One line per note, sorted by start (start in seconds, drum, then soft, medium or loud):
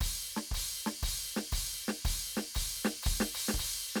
0.01 kick medium
0.01 crash loud
0.37 snare medium
0.51 kick medium
0.51 crash loud
0.57 kick soft
0.86 snare medium
1.03 kick medium
1.03 crash loud
1.36 snare medium
1.52 kick medium
1.52 crash loud
1.88 snare medium
2.05 kick medium
2.05 crash loud
2.37 snare medium
2.55 kick medium
2.55 crash loud
2.85 snare medium
3.03 kick medium
3.03 crash loud
3.20 snare medium
3.34 crash loud
3.48 snare medium
3.54 kick medium
3.58 kick soft
3.58 crash loud
3.96 snare medium